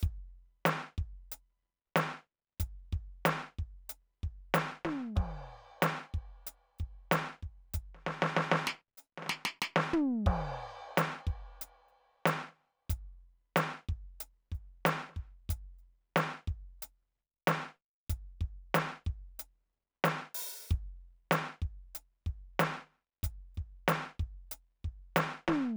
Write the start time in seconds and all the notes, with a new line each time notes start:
0.01 closed hi-hat, kick, hi-hat pedal
0.66 closed hi-hat, snare
0.99 kick
1.32 closed hi-hat
1.97 closed hi-hat, snare
2.60 closed hi-hat, kick
2.93 kick, closed hi-hat
3.26 closed hi-hat, snare
3.59 kick
3.90 closed hi-hat
4.24 kick
4.55 closed hi-hat, snare
4.85 snare, floor tom
5.16 kick, crash
5.83 closed hi-hat, snare
6.15 kick
6.47 closed hi-hat
6.79 kick, closed hi-hat
7.12 closed hi-hat, snare
7.43 kick
7.74 closed hi-hat, kick
7.95 snare
8.07 snare
8.23 snare
8.37 snare
8.52 snare
8.68 snare
8.98 hi-hat pedal
9.18 snare
9.23 snare
9.27 snare
9.30 snare
9.46 snare
9.62 snare, hi-hat pedal
9.77 snare
9.93 floor tom
10.27 kick, crash
10.98 closed hi-hat, snare
11.28 kick, closed hi-hat
11.62 closed hi-hat
11.89 closed hi-hat
12.26 closed hi-hat, snare
12.49 snare
12.90 closed hi-hat, kick
13.57 closed hi-hat, snare
13.89 kick
14.21 closed hi-hat
14.52 kick, closed hi-hat
14.86 closed hi-hat, snare
15.10 snare
15.17 kick, closed hi-hat
15.50 closed hi-hat, kick
15.79 closed hi-hat
16.17 closed hi-hat, snare
16.48 kick, closed hi-hat
16.83 closed hi-hat
17.48 closed hi-hat, snare
18.10 closed hi-hat, kick
18.42 kick, closed hi-hat
18.75 closed hi-hat, snare
19.05 kick, closed hi-hat
19.40 closed hi-hat
19.74 closed hi-hat
20.05 closed hi-hat, snare
20.35 open hi-hat
20.70 closed hi-hat, kick, hi-hat pedal
21.32 closed hi-hat, snare
21.62 kick
21.96 closed hi-hat
22.27 kick, closed hi-hat
22.60 closed hi-hat, snare
22.80 snare
23.24 closed hi-hat, kick
23.55 kick, closed hi-hat
23.89 closed hi-hat, snare
24.20 kick, closed hi-hat
24.52 closed hi-hat
24.84 kick, closed hi-hat
25.17 closed hi-hat, snare
25.48 snare, floor tom